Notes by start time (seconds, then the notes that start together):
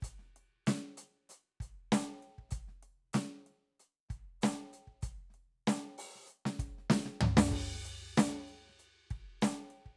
0.01 closed hi-hat, kick, snare, hi-hat pedal
0.19 snare
0.21 snare
0.26 snare
0.36 closed hi-hat
0.67 closed hi-hat, snare
0.98 open hi-hat
1.30 closed hi-hat, hi-hat pedal
1.61 closed hi-hat, kick
1.92 closed hi-hat, snare
2.23 closed hi-hat
2.39 kick
2.49 closed hi-hat, kick, snare
2.68 snare
2.83 closed hi-hat
3.14 closed hi-hat, snare
3.47 closed hi-hat
3.80 closed hi-hat
4.09 closed hi-hat, kick, snare
4.42 closed hi-hat, snare, hi-hat pedal
4.73 closed hi-hat
4.88 kick
5.01 closed hi-hat, kick, hi-hat pedal
5.30 snare
5.34 closed hi-hat
5.67 closed hi-hat, snare
5.98 open hi-hat
6.15 snare
6.27 closed hi-hat, hi-hat pedal
6.46 snare
6.60 kick, closed hi-hat
6.65 kick
6.68 kick
6.78 snare
6.90 snare
7.05 snare
7.21 floor tom
7.37 snare
7.48 kick, snare
7.52 crash
7.57 kick
7.74 snare
7.82 closed hi-hat, snare
8.17 closed hi-hat, snare
8.30 snare
8.47 closed hi-hat
8.69 snare
8.79 closed hi-hat
9.11 kick, closed hi-hat
9.42 open hi-hat, snare, hi-hat pedal
9.71 closed hi-hat
9.86 kick